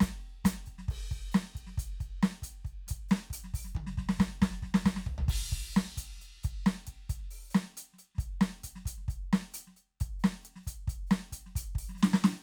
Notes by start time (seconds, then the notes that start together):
0.01 open hi-hat, kick, snare
0.45 closed hi-hat, kick, snare
0.67 closed hi-hat, kick
0.79 snare
0.89 kick, crash
1.12 closed hi-hat, kick
1.32 snare, hi-hat pedal
1.56 kick, closed hi-hat
1.67 snare
1.78 closed hi-hat, kick
1.89 snare
2.01 closed hi-hat, kick
2.23 snare
2.43 closed hi-hat, kick
2.65 closed hi-hat, kick
2.87 closed hi-hat, kick, snare
3.09 snare, hi-hat pedal
3.16 snare
3.31 closed hi-hat, kick
3.45 snare
3.54 open hi-hat, kick
3.65 snare
3.75 kick, high tom
3.87 snare
3.98 kick, snare
4.09 snare
4.20 kick, snare
4.42 kick, snare
4.53 snare
4.63 kick, snare
4.75 snare
4.86 kick, snare, hi-hat pedal
4.97 snare
5.07 kick, floor tom
5.19 floor tom
5.29 kick, crash
5.51 open hi-hat, kick
5.73 snare, hi-hat pedal
5.98 closed hi-hat, kick
6.17 snare
6.22 closed hi-hat
6.44 closed hi-hat, kick
6.67 snare
6.87 kick, closed hi-hat
7.10 closed hi-hat, kick
7.20 snare
7.31 open hi-hat
7.51 hi-hat pedal
7.55 snare
7.77 closed hi-hat
7.94 snare
7.99 closed hi-hat
8.15 kick, snare
8.20 closed hi-hat
8.41 snare
8.64 closed hi-hat, kick
8.76 snare
8.86 closed hi-hat, kick
8.98 snare
9.09 closed hi-hat, kick
9.33 snare
9.39 snare
9.52 closed hi-hat, hi-hat pedal
9.68 snare
9.77 closed hi-hat
10.01 closed hi-hat, kick
10.20 hi-hat pedal
10.25 snare
10.42 closed hi-hat, hi-hat pedal
10.56 snare
10.64 kick, hi-hat pedal
10.68 closed hi-hat
10.88 closed hi-hat, kick
11.07 hi-hat pedal
11.12 snare
11.33 closed hi-hat, kick
11.47 snare
11.56 closed hi-hat, kick
11.76 kick, open hi-hat
11.90 snare
11.95 snare, hi-hat pedal
12.00 snare
12.03 snare
12.14 snare
12.25 snare